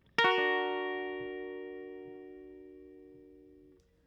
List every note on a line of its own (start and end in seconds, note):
0.19 3.77 A#4
0.25 3.80 F#4
0.38 3.80 D4